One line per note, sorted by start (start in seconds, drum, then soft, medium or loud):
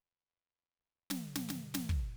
1.10 snare medium
1.10 high tom medium
1.36 snare medium
1.36 high tom medium
1.49 snare medium
1.49 high tom medium
1.74 snare medium
1.74 high tom medium
1.89 kick medium